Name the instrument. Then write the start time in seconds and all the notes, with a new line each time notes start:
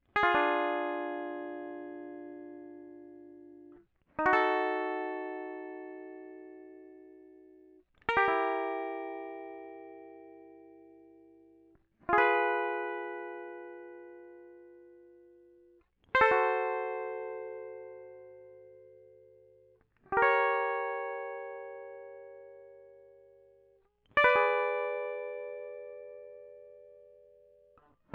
electric guitar
0.16 G#4
0.23 F4
0.35 D4
4.19 D#4
4.26 F#4
4.33 A4
8.09 A#4
8.17 G4
8.28 E4
12.09 F4 G#4
12.18 B4
16.15 C5
16.21 A4
16.32 F#4
20.07 F#4
20.13 G4
20.17 A#4
20.22 C#5
24.17 D5
24.24 B4
24.36 G#4